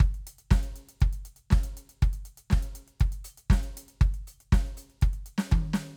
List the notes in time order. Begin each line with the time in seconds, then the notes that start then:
0.01 kick, closed hi-hat
0.15 closed hi-hat
0.28 closed hi-hat
0.39 closed hi-hat
0.52 kick, snare
0.64 closed hi-hat
0.72 kick
0.77 closed hi-hat
0.89 closed hi-hat
1.01 kick, closed hi-hat
1.14 closed hi-hat
1.26 closed hi-hat
1.37 closed hi-hat
1.51 kick, snare
1.64 closed hi-hat
1.75 kick, closed hi-hat
1.90 closed hi-hat
2.03 kick, closed hi-hat
2.14 closed hi-hat
2.26 closed hi-hat
2.38 closed hi-hat
2.51 kick, snare
2.63 closed hi-hat
2.74 kick, closed hi-hat
2.89 closed hi-hat
3.01 kick, closed hi-hat
3.13 closed hi-hat
3.25 closed hi-hat
3.38 closed hi-hat
3.51 kick, snare
3.64 closed hi-hat
3.78 closed hi-hat
3.89 closed hi-hat
4.02 kick, closed hi-hat
4.15 closed hi-hat
4.28 closed hi-hat
4.41 closed hi-hat
4.53 kick, snare
4.67 closed hi-hat
4.78 closed hi-hat
4.91 closed hi-hat
5.02 kick, closed hi-hat
5.14 closed hi-hat
5.27 closed hi-hat
5.39 snare
5.52 kick, high tom
5.74 snare